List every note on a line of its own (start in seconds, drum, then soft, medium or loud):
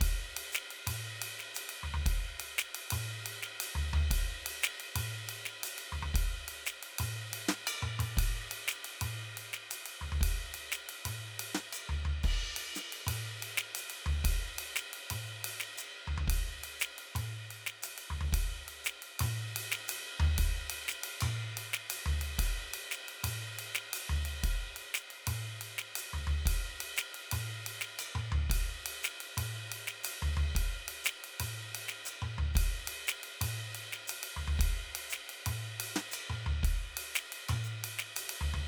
0.01 kick medium
0.01 ride loud
0.37 ride loud
0.52 snare medium
0.52 hi-hat pedal medium
0.71 ride medium
0.87 mid tom medium
0.87 ride loud
1.22 ride loud
1.39 snare soft
1.54 hi-hat pedal medium
1.54 ride loud
1.69 ride medium
1.83 kick soft
1.83 floor tom medium
1.94 floor tom medium
2.06 kick medium
2.06 ride loud
2.40 ride loud
2.58 snare medium
2.58 hi-hat pedal medium
2.75 ride loud
2.91 mid tom loud
2.91 ride loud
3.26 ride loud
3.43 snare soft
3.60 hi-hat pedal medium
3.60 ride loud
3.75 floor tom medium
3.93 floor tom loud
4.11 kick medium
4.11 ride loud
4.46 ride loud
4.62 snare medium
4.62 hi-hat pedal medium
4.80 ride medium
4.96 mid tom medium
4.96 ride loud
5.29 ride medium
5.45 snare soft
5.63 hi-hat pedal medium
5.63 ride loud
5.78 ride medium
5.92 floor tom medium
6.03 floor tom medium
6.14 kick medium
6.14 ride loud
6.48 ride medium
6.66 snare medium
6.66 hi-hat pedal medium
6.83 ride medium
6.99 mid tom loud
6.99 ride loud
7.33 ride loud
7.49 snare medium
7.67 hi-hat pedal medium
7.67 ride bell loud
7.82 mid tom medium
7.99 mid tom loud
7.99 ride medium
8.17 kick medium
8.17 ride loud
8.51 ride loud
8.68 snare medium
8.68 hi-hat pedal medium
8.85 ride medium
9.01 mid tom medium
9.01 ride loud
9.37 ride medium
9.53 snare medium
9.71 hi-hat pedal medium
9.71 ride loud
9.86 ride medium
10.01 floor tom medium
10.12 floor tom medium
10.21 kick medium
10.21 ride loud
10.54 ride medium
10.72 snare medium
10.72 hi-hat pedal medium
10.89 ride medium
11.05 mid tom medium
11.05 ride loud
11.40 ride loud
11.55 snare medium
11.73 hi-hat pedal medium
11.73 ride bell medium
11.89 floor tom medium
12.05 floor tom medium
12.24 kick medium
12.24 ride medium
12.56 ride loud
12.75 snare soft
12.75 hi-hat pedal medium
12.92 ride medium
13.07 mid tom loud
13.07 ride loud
13.42 ride medium
13.58 snare medium
13.75 hi-hat pedal medium
13.75 ride loud
13.90 ride medium
14.06 floor tom loud
14.24 kick medium
14.24 ride loud
14.58 ride loud
14.76 snare medium
14.76 hi-hat pedal medium
14.93 ride medium
15.10 mid tom medium
15.10 ride loud
15.26 hi-hat pedal soft
15.44 ride loud
15.60 snare medium
15.78 hi-hat pedal medium
15.78 ride bell medium
16.07 floor tom medium
16.18 floor tom loud
16.28 kick medium
16.28 ride loud
16.64 ride medium
16.80 snare medium
16.80 hi-hat pedal medium
16.98 ride medium
17.15 mid tom loud
17.15 ride medium
17.51 ride medium
17.67 snare medium
17.83 hi-hat pedal medium
17.83 ride loud
17.98 ride medium
18.10 floor tom medium
18.21 floor tom medium
18.33 kick medium
18.33 ride loud
18.68 ride medium
18.84 snare medium
18.84 hi-hat pedal medium
18.84 ride soft
19.02 ride medium
19.19 mid tom loud
19.19 ride loud
19.56 ride loud
19.72 snare medium
19.88 hi-hat pedal medium
19.88 ride loud
20.20 floor tom loud
20.38 kick medium
20.38 ride loud
20.70 ride loud
20.88 snare medium
20.88 hi-hat pedal medium
21.04 ride loud
21.21 mid tom loud
21.21 ride bell loud
21.57 ride loud
21.73 snare medium
21.90 hi-hat pedal medium
21.90 ride loud
22.06 floor tom loud
22.21 ride medium
22.39 kick medium
22.39 ride loud
22.74 ride loud
22.91 snare medium
22.91 hi-hat pedal medium
23.08 ride medium
23.24 mid tom medium
23.24 ride loud
23.59 ride medium
23.75 snare medium
23.93 hi-hat pedal medium
23.93 ride loud
24.09 floor tom loud
24.25 ride medium
24.44 kick medium
24.44 ride loud
24.76 ride medium
24.94 snare medium
24.94 hi-hat pedal medium
25.10 ride medium
25.27 mid tom loud
25.27 ride loud
25.61 ride medium
25.78 snare medium
25.96 hi-hat pedal medium
25.96 ride loud
26.13 floor tom medium
26.27 floor tom medium
26.46 kick medium
26.46 ride loud
26.81 ride loud
26.97 snare medium
26.97 hi-hat pedal medium
27.15 ride medium
27.32 mid tom loud
27.32 ride loud
27.66 ride loud
27.81 snare medium
27.99 hi-hat pedal medium
27.99 ride bell loud
28.15 mid tom medium
28.32 floor tom loud
28.50 kick medium
28.50 ride loud
28.86 ride loud
29.03 snare medium
29.03 hi-hat pedal medium
29.21 ride medium
29.37 mid tom medium
29.37 ride loud
29.72 ride loud
29.87 snare medium
30.04 hi-hat pedal medium
30.04 ride loud
30.22 floor tom loud
30.37 floor tom loud
30.55 kick medium
30.55 ride loud
30.88 ride loud
31.04 snare medium
31.04 hi-hat pedal medium
31.24 ride medium
31.40 mid tom medium
31.40 ride loud
31.75 ride loud
31.89 snare medium
32.05 hi-hat pedal medium
32.05 ride bell medium
32.22 mid tom medium
32.38 floor tom loud
32.54 kick medium
32.54 hi-hat pedal soft
32.54 ride loud
32.88 ride loud
33.07 snare medium
33.07 hi-hat pedal medium
33.23 ride medium
33.41 mid tom loud
33.41 ride loud
33.75 ride medium
33.93 snare soft
34.07 hi-hat pedal medium
34.07 ride loud
34.23 ride loud
34.37 kick soft
34.37 floor tom medium
34.48 floor tom medium
34.56 kick medium
34.56 hi-hat pedal soft
34.61 ride loud
34.95 ride loud
35.10 snare medium
35.10 hi-hat pedal medium
35.29 ride medium
35.46 mid tom loud
35.46 ride loud
35.80 ride loud
35.96 snare medium
36.12 hi-hat pedal medium
36.12 ride bell medium
36.30 mid tom medium
36.46 floor tom loud
36.63 kick medium
36.63 ride medium
36.97 ride loud
37.15 snare medium
37.15 hi-hat pedal medium
37.32 ride medium
37.49 mid tom loud
37.49 ride bell medium
37.64 hi-hat pedal soft
37.84 ride loud
37.99 snare medium
38.16 hi-hat pedal medium
38.16 ride loud
38.29 ride loud
38.41 kick soft
38.41 floor tom medium
38.54 floor tom loud